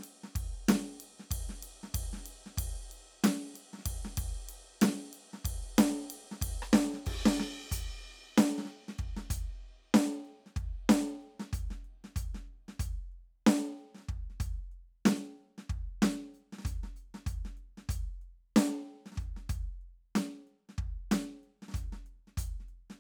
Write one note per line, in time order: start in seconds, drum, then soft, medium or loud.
0.01 snare soft
0.01 ride medium
0.24 snare soft
0.36 kick medium
0.36 ride medium
0.69 snare loud
0.69 ride loud
1.01 ride medium
1.20 snare soft
1.32 kick medium
1.32 ride loud
1.50 snare soft
1.64 ride medium
1.84 snare soft
1.95 kick medium
1.95 ride loud
2.14 snare soft
2.17 snare soft
2.27 ride medium
2.47 snare soft
2.58 kick medium
2.58 ride loud
2.88 ride soft
2.92 ride soft
3.25 snare loud
3.25 ride loud
3.55 snare soft
3.55 ride medium
3.74 snare soft
3.74 ride soft
3.80 snare soft
3.83 kick medium
3.83 snare soft
3.83 ride loud
4.06 snare soft
4.18 kick medium
4.18 ride loud
4.50 ride medium
4.82 snare loud
4.82 ride loud
5.14 ride medium
5.34 snare soft
5.45 kick medium
5.45 ride loud
5.79 snare loud
5.79 ride loud
6.11 ride medium
6.32 snare soft
6.42 kick medium
6.42 ride loud
6.63 cross-stick medium
6.74 snare loud
6.94 snare soft
7.07 kick medium
7.07 ride loud
7.26 snare loud
7.41 snare medium
7.72 closed hi-hat loud
7.72 kick medium
8.39 snare loud
8.39 closed hi-hat loud
8.59 snare soft
8.66 snare soft
8.68 snare soft
8.68 closed hi-hat soft
8.89 snare soft
8.99 kick medium
8.99 closed hi-hat soft
9.17 snare soft
9.31 closed hi-hat loud
9.31 kick medium
9.95 snare loud
9.95 closed hi-hat medium
10.26 closed hi-hat soft
10.47 snare soft
10.57 kick medium
10.57 closed hi-hat soft
10.90 closed hi-hat medium
10.90 snare loud
11.22 closed hi-hat soft
11.40 snare medium
11.54 closed hi-hat medium
11.54 kick medium
11.71 snare soft
11.85 closed hi-hat soft
12.05 snare soft
12.17 closed hi-hat medium
12.17 kick medium
12.35 snare soft
12.48 closed hi-hat soft
12.69 snare soft
12.80 closed hi-hat medium
12.80 kick medium
13.13 closed hi-hat soft
13.47 closed hi-hat medium
13.47 snare loud
13.80 closed hi-hat soft
13.95 snare soft
13.99 snare soft
14.09 kick medium
14.09 closed hi-hat soft
14.31 snare soft
14.41 closed hi-hat medium
14.41 kick medium
14.72 closed hi-hat soft
15.06 closed hi-hat medium
15.06 snare loud
15.59 snare soft
15.70 kick medium
15.70 closed hi-hat soft
16.03 closed hi-hat medium
16.03 snare loud
16.35 closed hi-hat soft
16.53 snare soft
16.59 snare soft
16.63 kick medium
16.63 snare soft
16.66 closed hi-hat medium
16.66 snare soft
16.84 snare soft
16.97 closed hi-hat soft
17.15 snare soft
17.27 closed hi-hat medium
17.27 kick medium
17.46 snare soft
17.58 closed hi-hat soft
17.78 snare soft
17.90 closed hi-hat medium
17.90 kick medium
18.22 closed hi-hat soft
18.57 closed hi-hat medium
18.57 snare loud
19.07 snare soft
19.13 snare soft
19.16 closed hi-hat soft
19.16 kick medium
19.16 snare soft
19.37 snare soft
19.50 closed hi-hat medium
19.50 kick medium
19.82 closed hi-hat soft
20.16 closed hi-hat medium
20.16 snare loud
20.48 closed hi-hat soft
20.70 snare soft
20.79 kick medium
20.79 closed hi-hat soft
21.12 closed hi-hat medium
21.12 snare loud
21.44 closed hi-hat soft
21.63 snare soft
21.69 snare soft
21.72 snare soft
21.75 closed hi-hat medium
21.75 kick medium
21.75 snare soft
21.93 snare soft
22.07 closed hi-hat soft
22.28 snare soft
22.38 closed hi-hat medium
22.38 kick medium
22.61 snare soft
22.69 closed hi-hat soft
22.91 snare soft